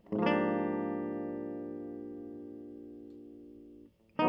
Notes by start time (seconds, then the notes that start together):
0.14 G#2 B2
0.19 F3 A#3
0.26 D4
0.31 G4
4.19 B3 D#4